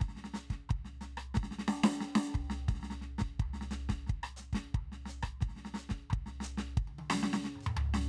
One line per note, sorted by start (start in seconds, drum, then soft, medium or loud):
0.01 kick soft
0.01 snare soft
0.09 snare soft
0.15 snare soft
0.17 snare soft
0.35 snare medium
0.35 hi-hat pedal medium
0.51 kick soft
0.51 snare soft
0.70 kick soft
0.70 floor tom medium
0.86 snare soft
1.02 snare soft
1.02 hi-hat pedal soft
1.18 cross-stick medium
1.35 kick soft
1.35 snare medium
1.44 snare medium
1.52 snare soft
1.59 snare medium
1.69 snare medium
1.84 snare loud
2.01 snare medium
2.16 snare loud
2.35 kick soft
2.35 floor tom medium
2.51 snare medium
2.69 kick medium
2.69 snare soft
2.75 snare soft
2.80 kick soft
2.80 snare soft
2.84 snare medium
2.91 snare soft
3.02 snare soft
3.19 kick soft
3.19 snare medium
3.40 kick soft
3.40 floor tom medium
3.54 snare soft
3.62 snare soft
3.72 snare medium
3.72 hi-hat pedal medium
3.90 kick soft
3.90 snare medium
4.07 kick soft
4.07 snare soft
4.24 cross-stick medium
4.37 snare soft
4.37 hi-hat pedal medium
4.54 kick soft
4.54 snare medium
4.75 kick soft
4.75 floor tom medium
4.93 snare soft
5.06 snare soft
5.06 hi-hat pedal medium
5.23 kick soft
5.23 cross-stick medium
5.41 kick soft
5.41 snare soft
5.49 snare soft
5.55 snare soft
5.57 snare soft
5.66 snare soft
5.75 snare medium
5.79 hi-hat pedal medium
5.90 kick soft
5.90 snare soft
6.11 kick soft
6.11 floor tom medium
6.27 snare soft
6.41 snare soft
6.41 hi-hat pedal loud
6.58 snare medium
6.78 kick medium
6.88 kick soft
6.88 high tom medium
6.99 high tom medium
7.11 snare loud
7.24 snare medium
7.34 snare medium
7.45 snare soft
7.45 hi-hat pedal soft
7.56 mid tom soft
7.62 hi-hat pedal soft
7.62 ride soft
7.67 mid tom medium
7.77 floor tom loud
7.95 snare loud